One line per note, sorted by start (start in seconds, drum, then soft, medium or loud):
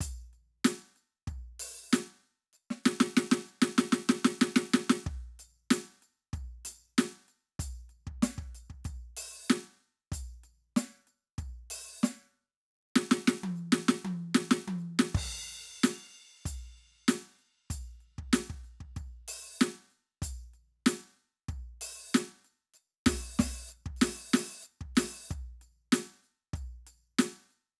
0.01 kick medium
0.01 percussion loud
0.33 percussion soft
0.65 snare loud
0.65 percussion loud
0.97 percussion soft
1.28 kick medium
1.28 percussion soft
1.60 percussion loud
1.93 snare loud
1.93 percussion medium
1.93 percussion loud
2.53 percussion soft
2.71 snare medium
2.84 snare loud
2.84 percussion soft
3.01 snare loud
3.16 snare loud
3.16 percussion soft
3.32 snare loud
3.47 percussion soft
3.62 snare loud
3.78 snare loud
3.93 snare loud
4.09 snare loud
4.09 percussion soft
4.25 snare loud
4.40 snare loud
4.40 percussion soft
4.56 snare loud
4.71 snare loud
4.71 percussion soft
4.90 snare loud
5.07 kick medium
5.40 percussion medium
5.71 snare loud
5.71 percussion loud
6.03 percussion soft
6.34 kick medium
6.34 percussion soft
6.65 percussion loud
6.98 snare loud
6.98 percussion medium
7.29 percussion soft
7.60 kick medium
7.60 percussion loud
7.90 percussion soft
8.07 kick medium
8.23 snare loud
8.23 percussion loud
8.38 kick medium
8.55 percussion medium
8.70 kick soft
8.85 kick medium
8.85 percussion medium
9.17 percussion loud
9.50 snare loud
9.50 percussion medium
10.12 kick medium
10.12 percussion loud
10.44 percussion soft
10.77 snare loud
10.77 percussion loud
11.08 percussion soft
11.39 kick medium
11.39 percussion medium
11.71 percussion loud
12.04 snare loud
12.04 percussion medium
12.04 percussion loud
12.96 snare loud
13.12 snare loud
13.26 snare loud
13.26 percussion soft
13.44 high tom loud
13.56 percussion soft
13.73 snare loud
13.88 snare loud
13.88 percussion soft
14.05 high tom loud
14.35 snare loud
14.50 snare loud
14.50 percussion soft
14.68 high tom loud
14.79 percussion soft
14.99 snare loud
15.15 kick loud
15.15 crash loud
15.84 snare loud
15.84 percussion loud
16.16 percussion soft
16.46 kick medium
16.46 percussion loud
16.78 percussion soft
17.09 snare loud
17.09 percussion loud
17.39 percussion soft
17.71 kick medium
17.71 percussion loud
18.01 percussion soft
18.19 kick medium
18.33 snare loud
18.33 percussion loud
18.50 kick medium
18.65 percussion soft
18.81 kick soft
18.97 kick medium
18.97 percussion soft
19.28 percussion loud
19.61 snare loud
19.61 percussion medium
19.91 percussion soft
20.22 kick medium
20.22 percussion loud
20.54 percussion soft
20.87 snare loud
20.87 percussion loud
21.49 kick medium
21.49 percussion soft
21.82 percussion loud
22.15 snare loud
22.15 percussion medium
22.15 percussion loud
22.45 percussion soft
22.74 percussion soft
23.07 kick medium
23.07 snare loud
23.07 percussion loud
23.39 kick medium
23.39 snare loud
23.39 percussion loud
23.69 percussion medium
23.86 kick medium
23.97 percussion soft
24.02 snare loud
24.02 percussion loud
24.34 snare loud
24.34 percussion loud
24.63 percussion medium
24.81 kick medium
24.96 snare loud
24.96 percussion soft
24.98 percussion loud
25.30 kick medium
25.30 percussion medium
25.62 percussion soft
25.93 snare loud
25.93 percussion loud
26.24 percussion soft
26.54 kick medium
26.54 percussion medium
26.87 percussion medium
27.19 snare loud
27.19 percussion loud
27.51 percussion soft